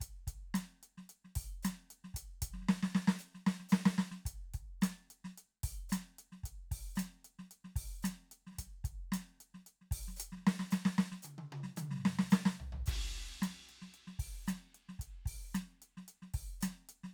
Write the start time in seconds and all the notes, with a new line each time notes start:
0.01 kick, closed hi-hat
0.28 kick, closed hi-hat
0.55 snare, closed hi-hat
0.83 closed hi-hat
0.98 snare
1.10 closed hi-hat
1.25 snare
1.36 kick, open hi-hat
1.63 snare, closed hi-hat, hi-hat pedal
1.91 closed hi-hat
2.05 snare
2.15 kick, closed hi-hat
2.42 kick, closed hi-hat
2.54 snare
2.58 snare
2.62 snare
2.69 snare
2.83 snare
2.95 snare
3.08 snare
3.19 hi-hat pedal
3.35 snare
3.47 snare
3.60 snare
3.70 snare, hi-hat pedal
3.86 snare
3.99 snare
4.12 snare
4.26 kick, closed hi-hat
4.54 kick, open hi-hat
4.82 snare, closed hi-hat, hi-hat pedal
5.11 closed hi-hat
5.25 snare
5.38 closed hi-hat
5.64 kick, open hi-hat
5.90 snare, closed hi-hat, hi-hat pedal
6.19 closed hi-hat
6.33 snare
6.44 kick, closed hi-hat
6.72 kick, open hi-hat
6.96 snare, closed hi-hat, hi-hat pedal
7.25 closed hi-hat
7.39 snare
7.51 closed hi-hat
7.65 snare
7.76 kick, open hi-hat
8.03 snare, closed hi-hat, hi-hat pedal
8.32 closed hi-hat
8.47 snare
8.52 snare
8.55 kick, snare
8.59 snare, closed hi-hat
8.85 kick, closed hi-hat
9.12 snare, closed hi-hat
9.41 closed hi-hat
9.55 snare
9.67 closed hi-hat
9.82 snare
9.92 kick, open hi-hat
10.08 snare
10.17 closed hi-hat, hi-hat pedal
10.33 snare
10.38 snare
10.42 snare
10.47 snare
10.60 snare
10.71 snare, hi-hat pedal
10.86 snare
10.99 snare
11.12 snare
11.23 hi-hat pedal, high tom
11.39 high tom
11.53 high tom
11.64 snare
11.77 hi-hat pedal, high tom
11.91 snare
11.96 snare
12.00 snare
12.06 snare
12.19 snare
12.31 snare, hi-hat pedal
12.46 snare
12.60 floor tom
12.73 floor tom
12.86 kick, hi-hat pedal, ride
13.43 snare, closed hi-hat
13.69 closed hi-hat
13.82 snare
13.95 closed hi-hat
14.08 snare
14.20 kick, open hi-hat
14.48 snare, closed hi-hat, hi-hat pedal
14.75 closed hi-hat
14.89 snare
15.00 kick, closed hi-hat
15.26 kick, open hi-hat
15.55 snare, closed hi-hat, hi-hat pedal
15.82 closed hi-hat
15.98 snare
16.09 closed hi-hat
16.23 snare
16.34 kick, open hi-hat
16.61 snare, closed hi-hat, hi-hat pedal
16.89 closed hi-hat
17.04 snare